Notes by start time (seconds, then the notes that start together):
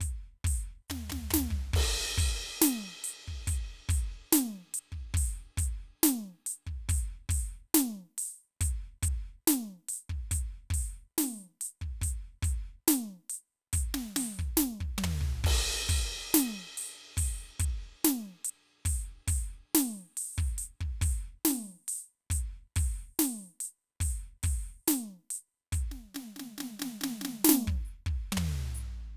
0.01 open hi-hat, kick
0.45 open hi-hat, kick, ride
0.89 snare, floor tom, hi-hat pedal
1.10 snare, floor tom
1.30 floor tom, hi-hat pedal
1.34 snare
1.51 kick
1.74 kick, crash, ride
2.18 open hi-hat, kick
2.62 open hi-hat, snare
3.04 open hi-hat
3.28 kick
3.47 open hi-hat, kick
3.89 open hi-hat, kick
4.33 open hi-hat, snare
4.42 snare
4.74 open hi-hat
4.92 kick
5.14 open hi-hat, kick
5.58 open hi-hat, kick
6.03 open hi-hat, snare
6.47 open hi-hat
6.67 kick
6.89 open hi-hat, kick
7.29 open hi-hat, kick
7.75 open hi-hat, snare
8.18 open hi-hat
8.61 open hi-hat, kick
9.03 open hi-hat, kick
9.48 open hi-hat, snare
9.89 open hi-hat
10.10 kick
10.31 open hi-hat, kick
10.71 open hi-hat, kick
11.18 open hi-hat, snare
11.24 snare
11.61 open hi-hat
11.82 kick
12.02 open hi-hat, kick
12.43 open hi-hat, kick
12.88 open hi-hat, snare
13.30 open hi-hat
13.73 open hi-hat, kick
13.94 snare
14.17 open hi-hat, snare
14.39 kick
14.57 open hi-hat, snare
14.81 kick
14.98 high tom
15.04 floor tom
15.21 kick
15.44 kick, crash, ride
15.89 open hi-hat, kick
16.34 open hi-hat, snare
16.78 open hi-hat
17.17 open hi-hat, kick
17.60 open hi-hat, kick
18.05 open hi-hat, snare
18.45 open hi-hat
18.85 open hi-hat, kick
19.28 open hi-hat, kick
19.75 open hi-hat, snare
20.17 open hi-hat
20.38 kick
20.58 open hi-hat
20.81 kick
21.02 open hi-hat, kick, ride
21.45 open hi-hat, snare
21.51 snare
21.88 open hi-hat
22.30 open hi-hat, kick
22.76 open hi-hat, kick
23.19 open hi-hat, snare
23.61 open hi-hat
24.01 open hi-hat, kick
24.43 open hi-hat, kick
24.88 open hi-hat, snare
25.31 open hi-hat
25.73 open hi-hat, kick
25.92 snare
26.15 snare
26.37 snare
26.40 snare
26.58 snare
26.61 snare
26.80 snare
26.82 snare
27.01 snare
27.04 snare
27.22 snare
27.25 snare
27.45 snare
27.49 snare
27.68 kick
27.85 hi-hat pedal
28.07 kick
28.32 high tom
28.37 floor tom
28.75 hi-hat pedal